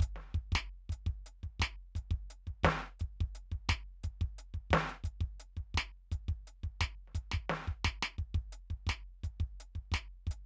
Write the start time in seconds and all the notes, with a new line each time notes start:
0.01 closed hi-hat, kick
0.17 snare
0.35 kick
0.53 closed hi-hat, kick, snare
0.90 closed hi-hat, kick
1.07 kick
1.27 closed hi-hat
1.44 kick
1.60 closed hi-hat, kick, snare
1.96 kick, closed hi-hat
2.11 kick
2.31 closed hi-hat
2.48 kick
2.64 closed hi-hat, kick, snare
3.00 closed hi-hat, kick
3.21 kick
3.36 closed hi-hat
3.52 kick
3.70 closed hi-hat, kick, snare
4.04 closed hi-hat, kick
4.22 kick
4.39 closed hi-hat
4.55 kick
4.71 closed hi-hat, kick, snare
4.90 closed hi-hat
5.05 closed hi-hat, kick
5.21 kick
5.40 closed hi-hat
5.57 kick
5.75 closed hi-hat, kick, snare
6.12 closed hi-hat, kick
6.29 kick
6.48 closed hi-hat
6.64 kick
6.81 closed hi-hat, kick, snare
7.08 snare
7.15 closed hi-hat, kick
7.32 kick, snare
7.50 snare
7.68 kick
7.85 kick, snare
8.03 snare
8.19 kick
8.35 kick
8.53 closed hi-hat
8.71 kick
8.87 closed hi-hat, kick, snare
9.24 kick, closed hi-hat
9.41 kick
9.61 closed hi-hat
9.76 kick
9.92 closed hi-hat, kick, snare
10.27 kick
10.32 closed hi-hat